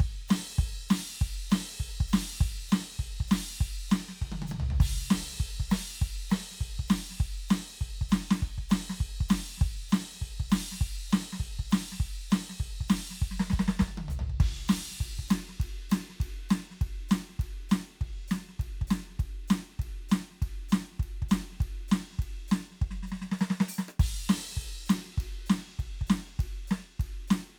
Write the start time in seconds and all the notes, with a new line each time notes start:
0.01 kick
0.29 snare, hi-hat pedal, crash
0.59 kick
0.90 snare, hi-hat pedal, crash
1.22 kick
1.50 snare, hi-hat pedal, crash
1.81 kick
2.01 kick
2.09 hi-hat pedal
2.14 snare, crash
2.42 kick
2.69 snare, hi-hat pedal, crash
3.00 kick
3.21 kick
3.29 snare, hi-hat pedal
3.33 crash
3.62 kick
3.90 snare, hi-hat pedal, crash
4.09 snare
4.22 kick, high tom
4.33 high tom
4.43 high tom
4.48 hi-hat pedal
4.52 high tom
4.61 floor tom
4.71 floor tom, hi-hat pedal
4.81 kick, crash
5.10 snare, hi-hat pedal, crash
5.33 snare
5.41 kick
5.61 kick
5.70 snare, hi-hat pedal, crash
6.02 kick
6.30 snare, hi-hat pedal, crash
6.52 snare
6.62 kick
6.80 kick
6.89 snare, hi-hat pedal, crash
7.12 snare
7.21 kick
7.49 snare, hi-hat pedal, crash
7.82 kick
8.02 kick
8.10 snare, hi-hat pedal, crash
8.32 snare
8.43 kick
8.59 kick
8.70 snare, hi-hat pedal, crash
8.90 snare
9.01 kick
9.21 kick
9.29 snare, hi-hat pedal, crash
9.59 kick, snare
9.90 snare, hi-hat pedal
9.94 crash
10.16 snare
10.22 kick
10.41 kick
10.50 snare, hi-hat pedal, crash
10.73 snare
10.82 kick
11.10 snare, hi-hat pedal, crash
11.33 snare
11.41 kick
11.60 kick
11.71 snare, hi-hat pedal, crash
11.93 snare
12.01 kick
12.21 kick
12.31 snare, hi-hat pedal, crash
12.50 snare
12.61 kick
12.81 kick
12.89 snare, hi-hat pedal, crash
13.12 snare
13.19 hi-hat pedal
13.23 kick
13.32 snare
13.41 snare
13.51 kick, snare, hi-hat pedal
13.60 snare
13.69 snare
13.80 kick, snare, hi-hat pedal
13.89 high tom
13.98 high tom
14.09 floor tom, hi-hat pedal
14.20 floor tom
14.30 kick
14.41 kick, ride
14.69 snare, hi-hat pedal, crash
14.92 snare
15.01 kick, ride
15.20 kick
15.29 snare, hi-hat pedal, ride
15.50 snare
15.61 kick, ride
15.90 snare, hi-hat pedal, ride
16.10 snare
16.21 kick, ride
16.50 snare, hi-hat pedal, ride
16.72 snare
16.82 kick, ride
17.10 snare, hi-hat pedal, ride
17.30 snare
17.35 snare
17.40 kick, ride
17.70 snare, hi-hat pedal, ride
17.91 cross-stick
18.02 kick, ride
18.29 snare, hi-hat pedal, ride
18.49 snare
18.60 kick, ride
18.82 kick
18.88 snare, hi-hat pedal
18.92 ride
19.11 snare
19.20 kick, ride
19.49 snare, hi-hat pedal, ride
19.71 snare
19.80 kick, ride
20.10 snare, hi-hat pedal, ride
20.32 snare
20.43 kick, ride
20.70 snare, hi-hat pedal, ride
20.93 snare
21.00 kick, ride
21.23 kick
21.30 snare, hi-hat pedal, ride
21.53 snare
21.61 kick, ride
21.84 kick
21.89 snare, hi-hat pedal, ride
22.14 snare
22.20 kick, ride
22.49 snare, hi-hat pedal, ride
22.73 snare
22.82 kick, ride
22.92 snare
23.04 snare
23.08 hi-hat pedal
23.13 snare
23.23 snare
23.33 snare
23.40 snare, hi-hat pedal
23.51 snare
23.61 snare
23.69 open hi-hat
23.79 snare
23.89 cross-stick
24.00 kick, crash
24.29 snare, hi-hat pedal, crash
24.35 snare
24.53 snare
24.58 kick
24.62 ride
24.87 snare, hi-hat pedal
24.91 ride
25.07 snare
25.19 kick, ride
25.47 snare, hi-hat pedal, ride
25.68 snare
25.80 kick, ride
26.02 kick
26.08 snare, hi-hat pedal, ride
26.28 cross-stick
26.40 kick, ride
26.68 snare, hi-hat pedal, ride
27.00 kick, ride
27.29 snare, hi-hat pedal, ride